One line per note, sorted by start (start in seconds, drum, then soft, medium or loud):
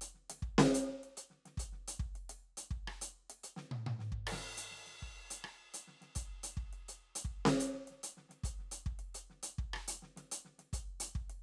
0.01 closed hi-hat medium
0.14 snare soft
0.30 snare soft
0.30 closed hi-hat medium
0.42 kick soft
0.58 snare loud
0.65 snare soft
0.74 closed hi-hat loud
0.88 snare soft
1.03 closed hi-hat soft
1.17 closed hi-hat medium
1.30 snare soft
1.45 snare soft
1.45 closed hi-hat soft
1.57 closed hi-hat medium
1.57 kick soft
1.72 snare soft
1.88 closed hi-hat loud
1.99 kick soft
2.15 closed hi-hat soft
2.29 closed hi-hat medium
2.57 closed hi-hat medium
2.70 kick soft
2.87 cross-stick medium
3.01 closed hi-hat loud
3.30 closed hi-hat medium
3.43 closed hi-hat medium
3.56 snare soft
3.71 high tom medium
3.86 high tom medium
3.99 snare soft
4.12 kick soft
4.27 cross-stick medium
4.27 crash medium
4.32 snare soft
4.57 closed hi-hat medium
4.71 snare soft
4.86 snare soft
4.86 closed hi-hat soft
5.02 kick soft
5.02 snare soft
5.30 closed hi-hat loud
5.44 cross-stick medium
5.74 closed hi-hat medium
5.87 snare soft
6.01 snare soft
6.01 closed hi-hat soft
6.15 closed hi-hat medium
6.15 kick soft
6.43 closed hi-hat loud
6.57 kick soft
6.73 closed hi-hat soft
6.88 closed hi-hat medium
7.15 closed hi-hat loud
7.25 kick soft
7.45 snare medium
7.60 closed hi-hat loud
7.73 snare soft
7.87 snare soft
7.87 closed hi-hat soft
8.03 closed hi-hat loud
8.17 snare soft
8.29 snare soft
8.29 closed hi-hat soft
8.43 closed hi-hat medium
8.43 kick soft
8.59 snare soft
8.71 closed hi-hat medium
8.86 kick soft
8.99 closed hi-hat soft
9.14 closed hi-hat medium
9.30 snare soft
9.43 closed hi-hat loud
9.58 kick soft
9.73 cross-stick medium
9.76 cross-stick medium
9.88 closed hi-hat loud
10.02 snare soft
10.16 snare soft
10.16 closed hi-hat soft
10.31 closed hi-hat loud
10.45 snare soft
10.58 snare soft
10.58 closed hi-hat soft
10.73 closed hi-hat medium
10.73 kick soft
11.00 closed hi-hat loud
11.15 kick soft
11.30 closed hi-hat soft